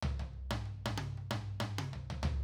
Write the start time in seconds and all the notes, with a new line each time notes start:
0.01 floor tom
0.19 floor tom
0.33 high tom
0.51 mid tom
0.65 high tom
0.86 mid tom
0.98 high tom
1.17 high tom
1.31 mid tom
1.60 mid tom
1.78 high tom
1.93 floor tom
2.10 floor tom
2.23 floor tom